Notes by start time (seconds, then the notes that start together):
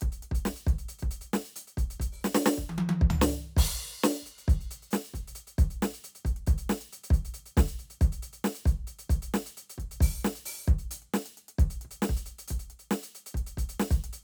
0.01 kick, closed hi-hat
0.12 closed hi-hat
0.22 closed hi-hat
0.31 closed hi-hat, kick
0.45 snare
0.56 closed hi-hat
0.67 kick, closed hi-hat
0.78 closed hi-hat
0.89 closed hi-hat
0.99 closed hi-hat, kick
1.11 closed hi-hat
1.21 closed hi-hat
1.33 snare
1.45 closed hi-hat
1.56 closed hi-hat
1.67 closed hi-hat
1.77 closed hi-hat, kick
1.90 closed hi-hat
2.00 open hi-hat, kick
2.12 open hi-hat
2.21 snare, hi-hat pedal
2.35 snare
2.46 snare
2.58 kick, hi-hat pedal
2.69 high tom
2.78 high tom
2.89 high tom
3.01 kick
3.10 floor tom
3.22 snare
3.57 kick, crash
4.04 snare
4.15 closed hi-hat
4.22 kick
4.26 closed hi-hat
4.38 closed hi-hat
4.48 closed hi-hat, kick
4.61 closed hi-hat
4.82 closed hi-hat
4.91 snare, hi-hat pedal
5.04 closed hi-hat
5.14 closed hi-hat, kick
5.28 closed hi-hat
5.35 closed hi-hat
5.47 closed hi-hat
5.58 closed hi-hat, kick
5.70 closed hi-hat
5.82 snare
5.94 closed hi-hat
6.04 closed hi-hat
6.15 closed hi-hat
6.25 closed hi-hat, kick
6.36 closed hi-hat
6.47 closed hi-hat, kick
6.58 closed hi-hat
6.69 snare
6.81 closed hi-hat
6.93 closed hi-hat
7.04 closed hi-hat
7.10 closed hi-hat, kick
7.25 closed hi-hat
7.34 closed hi-hat
7.46 closed hi-hat
7.57 kick, snare
7.68 closed hi-hat
7.79 closed hi-hat
7.90 closed hi-hat
8.01 closed hi-hat, kick
8.12 closed hi-hat
8.22 closed hi-hat
8.33 closed hi-hat
8.44 snare
8.55 closed hi-hat
8.66 closed hi-hat, kick
8.87 closed hi-hat
8.99 closed hi-hat
9.10 closed hi-hat, kick
9.22 closed hi-hat
9.34 snare
9.46 closed hi-hat
9.57 closed hi-hat
9.70 closed hi-hat
9.78 kick, closed hi-hat
9.91 closed hi-hat
10.01 open hi-hat, kick
10.15 open hi-hat
10.20 hi-hat pedal
10.25 snare
10.35 closed hi-hat, kick
10.46 open hi-hat
10.58 open hi-hat
10.64 kick, hi-hat pedal
10.69 closed hi-hat
10.79 closed hi-hat
10.91 closed hi-hat
11.02 closed hi-hat
11.14 snare
11.26 closed hi-hat
11.37 closed hi-hat
11.48 closed hi-hat
11.59 kick, closed hi-hat
11.70 closed hi-hat
11.81 kick, closed hi-hat
11.91 closed hi-hat
12.02 snare
12.09 kick
12.17 closed hi-hat
12.26 closed hi-hat
12.39 closed hi-hat
12.48 closed hi-hat, kick
12.59 closed hi-hat
12.70 closed hi-hat
12.79 closed hi-hat
12.91 snare
13.03 closed hi-hat
13.15 closed hi-hat
13.26 closed hi-hat
13.34 kick, closed hi-hat
13.47 closed hi-hat
13.57 closed hi-hat, kick
13.69 closed hi-hat
13.80 snare
13.91 closed hi-hat, kick
14.04 closed hi-hat
14.13 closed hi-hat